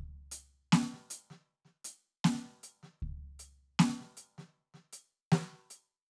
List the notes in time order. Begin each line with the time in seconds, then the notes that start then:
0.02 kick
0.33 closed hi-hat
0.73 snare
0.95 snare
1.11 closed hi-hat
1.31 snare
1.66 snare
1.86 closed hi-hat
2.25 snare
2.44 snare
2.64 closed hi-hat
2.84 snare
3.01 kick, closed hi-hat
3.40 closed hi-hat
3.80 snare
4.02 snare
4.18 closed hi-hat
4.39 snare
4.75 snare
4.94 closed hi-hat
5.33 snare
5.54 snare
5.71 closed hi-hat